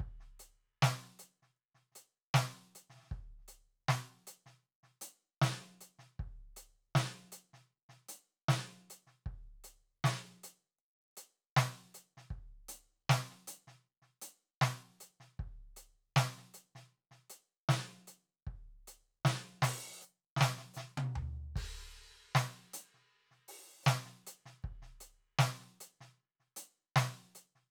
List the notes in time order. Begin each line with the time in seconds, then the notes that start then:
0.00 kick, closed hi-hat
0.21 snare
0.40 closed hi-hat
0.83 snare
1.03 snare
1.20 closed hi-hat
1.43 snare
1.57 closed hi-hat
1.75 snare
1.92 closed hi-hat, snare
2.35 snare
2.53 snare
2.76 closed hi-hat
2.90 snare
2.96 snare
3.00 snare
3.04 snare
3.07 snare
3.12 kick, snare
3.16 snare
3.21 snare
3.39 snare
3.48 closed hi-hat
3.89 snare
4.10 snare
4.27 closed hi-hat
4.46 snare
4.64 closed hi-hat
4.84 snare
5.02 closed hi-hat
5.42 snare
5.60 snare
5.81 closed hi-hat
5.99 snare
6.20 kick
6.57 closed hi-hat
6.96 snare
7.33 closed hi-hat
7.54 snare
7.90 snare
8.09 closed hi-hat
8.49 snare
8.91 closed hi-hat
9.07 snare
9.26 kick
9.64 closed hi-hat
10.05 snare
10.29 snare
10.44 closed hi-hat
10.79 closed hi-hat
11.17 closed hi-hat
11.57 snare
11.77 snare
11.95 closed hi-hat
12.18 snare
12.31 kick
12.38 kick
12.69 closed hi-hat
13.10 snare
13.31 snare
13.48 closed hi-hat
13.68 snare
14.02 snare
14.22 closed hi-hat
14.62 snare
14.80 snare
15.01 closed hi-hat
15.21 snare
15.38 kick, closed hi-hat
15.77 closed hi-hat
16.17 snare
16.38 snare
16.54 closed hi-hat
16.76 snare
17.12 snare
17.30 closed hi-hat
17.69 snare
17.91 snare
18.08 closed hi-hat
18.47 kick
18.88 closed hi-hat
19.25 snare
19.63 open hi-hat, snare
20.02 hi-hat pedal
20.37 snare
20.41 snare
20.58 snare
20.74 snare, hi-hat pedal
20.98 high tom
21.16 floor tom
21.56 kick, crash
22.35 snare
22.48 snare
22.54 snare
22.74 closed hi-hat
22.95 snare
23.32 snare
23.49 open hi-hat
23.84 snare, hi-hat pedal
24.06 snare
24.27 closed hi-hat
24.46 snare
24.63 kick, closed hi-hat
24.83 snare
25.01 closed hi-hat
25.39 snare
25.61 snare
25.81 closed hi-hat
26.01 snare
26.40 snare
26.57 closed hi-hat
26.96 snare
27.02 snare
27.36 closed hi-hat
27.56 snare